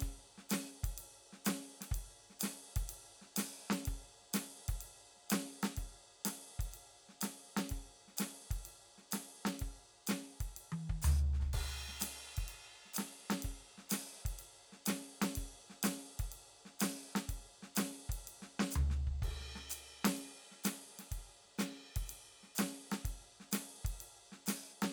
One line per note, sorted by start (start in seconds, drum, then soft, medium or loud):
0.01 kick soft
0.01 ride medium
0.38 snare soft
0.50 snare medium
0.50 hi-hat pedal loud
0.50 ride loud
0.84 kick soft
0.84 ride medium
0.98 ride medium
1.33 snare soft
1.45 snare medium
1.45 hi-hat pedal loud
1.45 ride loud
1.81 snare soft
1.81 ride medium
1.92 kick soft
1.92 ride medium
2.30 snare soft
2.40 snare medium
2.40 hi-hat pedal medium
2.40 ride loud
2.76 kick medium
2.76 ride medium
2.88 hi-hat pedal soft
2.88 ride medium
3.22 snare soft
3.36 snare medium
3.36 hi-hat pedal loud
3.36 ride loud
3.70 snare medium
3.70 ride medium
3.86 kick soft
3.86 ride medium
4.22 snare soft
4.34 snare medium
4.34 hi-hat pedal loud
4.34 ride loud
4.69 kick soft
4.69 ride medium
4.81 ride medium
5.17 snare soft
5.30 snare medium
5.30 hi-hat pedal loud
5.30 ride loud
5.63 snare medium
5.63 ride medium
5.77 kick soft
5.77 ride medium
6.25 snare medium
6.25 hi-hat pedal loud
6.25 ride loud
6.59 kick soft
6.59 ride medium
6.71 hi-hat pedal soft
6.71 ride medium
7.09 snare soft
7.21 snare medium
7.21 hi-hat pedal loud
7.21 ride loud
7.57 snare medium
7.57 ride medium
7.70 kick soft
7.70 ride medium
8.08 snare soft
8.17 snare medium
8.17 hi-hat pedal loud
8.17 ride loud
8.51 kick soft
8.51 ride medium
8.63 hi-hat pedal soft
8.63 ride medium
8.98 snare soft
9.12 snare medium
9.12 hi-hat pedal medium
9.12 ride loud
9.46 snare medium
9.46 ride medium
9.60 kick soft
9.60 ride medium
9.94 snare soft
10.07 snare medium
10.07 hi-hat pedal loud
10.07 ride loud
10.41 kick soft
10.41 ride medium
10.57 ride medium
10.72 high tom medium
10.90 kick soft
11.02 floor tom loud
11.02 hi-hat pedal loud
11.34 snare soft
11.40 kick soft
11.40 snare soft
11.43 snare soft
11.46 snare soft
11.50 snare soft
11.50 crash medium
11.54 kick soft
11.89 snare soft
12.00 snare soft
12.00 hi-hat pedal loud
12.00 ride loud
12.37 kick soft
12.37 ride medium
12.48 hi-hat pedal soft
12.48 ride medium
12.86 snare soft
12.94 hi-hat pedal loud
12.94 ride loud
12.99 snare medium
13.30 snare medium
13.30 ride medium
13.43 kick soft
13.43 ride medium
13.78 snare soft
13.90 snare medium
13.90 hi-hat pedal loud
13.90 ride loud
14.26 kick soft
14.26 ride medium
14.39 ride medium
14.73 snare soft
14.86 snare medium
14.86 hi-hat pedal loud
14.86 ride loud
15.22 snare medium
15.22 ride medium
15.36 kick soft
15.36 ride medium
15.70 snare soft
15.83 snare medium
15.83 hi-hat pedal loud
15.83 ride loud
16.20 kick soft
16.20 ride medium
16.32 ride medium
16.66 snare soft
16.80 snare medium
16.80 hi-hat pedal loud
16.80 ride loud
17.16 snare medium
17.16 ride medium
17.29 kick soft
17.29 ride medium
17.63 snare soft
17.76 snare medium
17.76 hi-hat pedal loud
17.76 ride loud
18.10 kick soft
18.10 ride medium
18.28 ride medium
18.42 snare soft
18.60 snare medium
18.71 hi-hat pedal loud
18.76 floor tom loud
18.91 snare soft
19.07 kick soft
19.23 kick medium
19.23 ride medium
19.41 snare soft
19.56 snare soft
19.70 hi-hat pedal loud
19.70 ride medium
20.05 snare loud
20.05 ride loud
20.17 ride soft
20.52 snare soft
20.64 snare medium
20.64 hi-hat pedal loud
20.64 ride loud
20.99 snare soft
20.99 ride medium
21.09 kick soft
21.09 hi-hat pedal soft
21.09 ride medium
21.44 snare soft
21.59 snare medium
21.59 hi-hat pedal medium
21.59 ride medium
21.96 kick soft
21.96 ride medium
22.01 snare soft
22.06 hi-hat pedal soft
22.06 ride medium
22.43 snare soft
22.56 snare medium
22.56 hi-hat pedal medium
22.56 ride loud
22.92 snare medium
22.92 ride medium
23.05 kick soft
23.05 ride medium
23.40 snare soft
23.52 snare medium
23.52 hi-hat pedal loud
23.52 ride loud
23.85 kick soft
23.85 ride medium
23.97 hi-hat pedal soft
23.97 ride medium
24.32 snare soft
24.46 snare medium
24.46 hi-hat pedal loud
24.46 ride loud
24.82 snare medium
24.82 ride medium